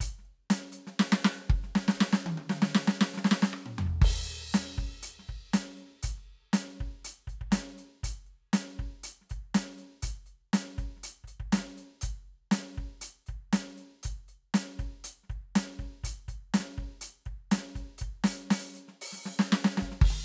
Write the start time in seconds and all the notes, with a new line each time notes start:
0.01 closed hi-hat, kick
0.19 snare
0.26 closed hi-hat
0.51 closed hi-hat, snare
0.73 closed hi-hat
0.88 snare
1.00 snare
1.13 snare
1.25 snare
1.50 kick
1.64 snare
1.76 snare
1.89 snare
2.01 snare
2.13 snare
2.27 high tom
2.38 high tom
2.50 snare
2.63 snare
2.75 snare
2.88 snare
3.02 snare
3.14 snare
3.18 snare
3.25 snare
3.32 snare
3.43 snare
3.54 cross-stick
3.67 mid tom
3.79 floor tom
3.88 kick
4.02 kick, crash
4.52 closed hi-hat, snare, hi-hat pedal
4.79 kick, closed hi-hat
5.03 closed hi-hat
5.20 snare
5.27 closed hi-hat, kick
5.54 closed hi-hat, snare
5.77 closed hi-hat
6.03 closed hi-hat, kick
6.18 snare
6.26 closed hi-hat
6.54 closed hi-hat, snare
6.78 kick, closed hi-hat
7.05 closed hi-hat
7.28 closed hi-hat, kick
7.42 kick
7.52 closed hi-hat, kick, snare
7.58 snare
7.79 closed hi-hat
8.04 closed hi-hat, kick
8.27 closed hi-hat
8.54 closed hi-hat, snare
8.78 kick, closed hi-hat
9.04 closed hi-hat
9.22 snare
9.30 closed hi-hat, kick
9.55 closed hi-hat, snare
9.79 closed hi-hat
10.03 closed hi-hat, kick
10.27 closed hi-hat
10.54 closed hi-hat, snare
10.79 closed hi-hat, kick
10.97 snare
11.04 closed hi-hat
11.25 closed hi-hat, kick
11.40 kick
11.53 closed hi-hat, snare
11.58 snare
11.78 closed hi-hat
12.02 closed hi-hat, kick
12.24 closed hi-hat
12.52 closed hi-hat, snare
12.59 snare
12.76 closed hi-hat, kick
13.02 closed hi-hat
13.27 closed hi-hat, kick
13.53 closed hi-hat, snare
13.78 closed hi-hat
14.04 closed hi-hat, kick
14.29 closed hi-hat
14.55 closed hi-hat, snare
14.79 closed hi-hat, kick
14.89 kick
15.05 closed hi-hat
15.24 snare
15.30 kick, closed hi-hat
15.56 closed hi-hat, snare
15.80 kick, closed hi-hat
16.04 closed hi-hat, kick
16.29 closed hi-hat, kick
16.55 closed hi-hat, snare
16.60 snare
16.78 kick, closed hi-hat
17.02 closed hi-hat
17.26 kick, closed hi-hat
17.52 closed hi-hat, snare
17.58 snare
17.76 closed hi-hat, kick
17.99 open hi-hat, kick
18.25 open hi-hat, snare
18.51 open hi-hat, snare
18.75 closed hi-hat, hi-hat pedal
18.89 snare
19.02 open hi-hat
19.13 snare
19.26 snare
19.40 snare
19.49 hi-hat pedal
19.53 snare
19.65 snare
19.78 snare
19.83 kick
19.92 snare
20.02 kick, crash
20.11 high tom